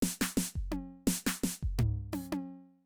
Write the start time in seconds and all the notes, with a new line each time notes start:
0.02 snare
0.21 snare
0.37 snare
0.56 kick
0.72 high tom
1.07 snare
1.26 snare
1.43 snare
1.63 kick
1.79 floor tom
2.12 hi-hat pedal, high tom
2.32 high tom